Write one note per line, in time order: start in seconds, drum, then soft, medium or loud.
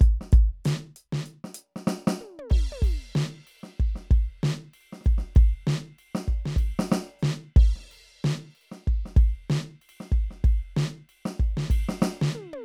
0.01 closed hi-hat medium
0.01 kick loud
0.21 snare soft
0.32 kick loud
0.32 closed hi-hat medium
0.65 open hi-hat loud
0.65 snare loud
0.65 hi-hat pedal medium
0.96 closed hi-hat medium
1.13 snare loud
1.21 hi-hat pedal soft
1.26 closed hi-hat medium
1.44 snare soft
1.44 hi-hat pedal soft
1.55 closed hi-hat loud
1.76 snare medium
1.87 snare loud
1.87 hi-hat pedal medium
2.08 snare loud
2.15 hi-hat pedal soft
2.21 mid tom medium
2.39 high tom medium
2.50 kick medium
2.50 crash medium
2.72 high tom medium
2.82 kick medium
2.82 ride medium
3.16 snare loud
3.16 hi-hat pedal medium
3.42 hi-hat pedal soft
3.47 ride bell soft
3.59 ride soft
3.64 snare soft
3.80 kick medium
3.96 snare soft
4.11 kick loud
4.11 ride bell soft
4.43 snare loud
4.43 hi-hat pedal medium
4.74 ride soft
4.81 ride soft
4.93 snare soft
4.93 hi-hat pedal soft
5.01 snare soft
5.01 ride soft
5.06 kick medium
5.18 snare soft
5.35 kick loud
5.35 ride soft
5.67 snare loud
5.67 hi-hat pedal medium
5.99 ride soft
6.15 snare medium
6.28 kick medium
6.46 snare medium
6.56 kick medium
6.56 ride medium
6.79 snare loud
6.87 hi-hat pedal medium
6.92 snare loud
7.19 snare loud
7.19 hi-hat pedal soft
7.56 kick loud
7.56 crash medium
7.76 snare soft
7.81 snare soft
7.85 snare soft
7.91 ride bell soft
8.24 snare loud
8.24 hi-hat pedal medium
8.50 hi-hat pedal soft
8.55 ride bell soft
8.61 ride soft
8.72 snare soft
8.88 kick medium
9.06 snare soft
9.17 kick loud
9.17 ride bell soft
9.50 snare loud
9.50 hi-hat pedal medium
9.82 ride bell soft
9.89 ride soft
10.01 snare soft
10.12 kick medium
10.31 snare soft
10.44 kick loud
10.44 ride bell soft
10.77 snare loud
10.77 hi-hat pedal medium
11.09 ride bell soft
11.26 snare medium
11.40 kick medium
11.40 ride soft
11.57 snare loud
11.70 kick medium
11.70 ride medium
11.89 kick soft
11.89 snare medium
12.02 snare loud
12.02 hi-hat pedal medium
12.22 snare loud
12.31 hi-hat pedal medium
12.31 mid tom medium
12.53 high tom medium